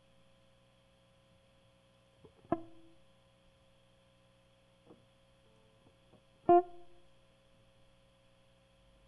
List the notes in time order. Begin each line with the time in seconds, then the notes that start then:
2.52 E4
6.49 F4